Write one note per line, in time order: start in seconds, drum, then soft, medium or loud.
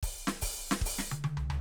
0.03 open hi-hat loud
0.03 kick medium
0.27 snare medium
0.41 open hi-hat loud
0.41 kick medium
0.71 snare loud
0.81 kick medium
0.86 open hi-hat loud
0.98 snare medium
1.11 hi-hat pedal soft
1.11 high tom loud
1.24 high tom loud
1.37 floor tom loud
1.50 floor tom loud